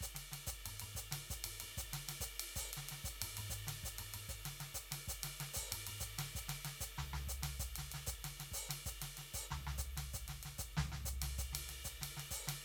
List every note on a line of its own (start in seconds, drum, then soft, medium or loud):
0.01 kick soft
0.01 hi-hat pedal medium
0.15 snare soft
0.15 ride medium
0.32 snare soft
0.32 ride medium
0.47 kick soft
0.47 hi-hat pedal medium
0.66 high tom soft
0.66 ride medium
0.80 high tom soft
0.80 ride medium
0.96 kick soft
0.96 hi-hat pedal medium
1.12 snare soft
1.12 ride loud
1.31 kick soft
1.31 hi-hat pedal medium
1.45 high tom soft
1.45 ride loud
1.61 high tom soft
1.61 ride medium
1.78 kick soft
1.78 hi-hat pedal medium
1.94 snare soft
1.94 ride medium
2.09 snare soft
2.09 ride medium
2.21 kick soft
2.21 hi-hat pedal loud
2.40 ride loud
2.56 kick soft
2.56 hi-hat pedal medium
2.74 snare soft
2.74 ride medium
2.89 snare soft
2.89 ride medium
3.05 kick soft
3.05 hi-hat pedal medium
3.22 high tom medium
3.22 ride loud
3.37 high tom soft
3.37 ride medium
3.50 kick soft
3.50 hi-hat pedal medium
3.67 snare soft
3.67 ride medium
3.84 kick soft
3.84 hi-hat pedal medium
3.99 high tom soft
3.99 ride medium
4.14 high tom soft
4.14 ride medium
4.29 kick soft
4.29 hi-hat pedal medium
4.46 snare soft
4.46 ride medium
4.61 snare soft
4.61 ride medium
4.75 kick soft
4.75 hi-hat pedal medium
4.92 snare soft
4.92 ride loud
5.08 kick soft
5.08 hi-hat pedal medium
5.24 snare soft
5.24 ride loud
5.41 snare soft
5.41 ride medium
5.54 kick soft
5.54 hi-hat pedal medium
5.72 high tom soft
5.72 ride loud
5.87 high tom soft
5.87 ride medium
6.01 kick soft
6.01 hi-hat pedal medium
6.19 snare medium
6.19 ride medium
6.36 kick soft
6.36 hi-hat pedal medium
6.49 snare soft
6.49 ride medium
6.65 snare soft
6.65 ride medium
6.81 kick soft
6.81 hi-hat pedal medium
6.98 snare soft
6.98 floor tom medium
7.14 snare soft
7.14 floor tom medium
7.28 kick soft
7.28 hi-hat pedal medium
7.43 snare medium
7.43 ride medium
7.60 kick soft
7.60 hi-hat pedal medium
7.76 snare soft
7.76 ride medium
7.92 snare soft
7.92 ride medium
8.07 kick soft
8.07 hi-hat pedal loud
8.25 snare soft
8.25 ride medium
8.40 snare soft
8.40 ride medium
8.52 kick soft
8.52 hi-hat pedal medium
8.70 snare soft
8.70 ride loud
8.86 kick soft
8.86 hi-hat pedal medium
9.02 snare soft
9.02 ride medium
9.18 snare soft
9.18 ride medium
9.34 kick soft
9.34 hi-hat pedal medium
9.51 snare soft
9.51 floor tom medium
9.67 snare soft
9.67 floor tom medium
9.79 kick soft
9.79 hi-hat pedal medium
9.97 snare soft
9.97 ride medium
10.14 kick soft
10.14 hi-hat pedal medium
10.29 snare soft
10.29 ride medium
10.43 snare soft
10.43 ride medium
10.59 kick soft
10.59 hi-hat pedal medium
10.77 snare medium
10.77 floor tom medium
10.92 snare soft
11.05 kick soft
11.05 hi-hat pedal medium
11.22 snare soft
11.22 ride loud
11.39 kick soft
11.39 hi-hat pedal medium
11.53 snare soft
11.53 ride loud
11.69 snare soft
11.69 ride medium
11.85 kick soft
11.85 hi-hat pedal medium
12.02 snare soft
12.02 ride medium
12.17 snare soft
12.17 ride medium
12.31 kick soft
12.31 hi-hat pedal medium
12.48 snare medium
12.48 ride loud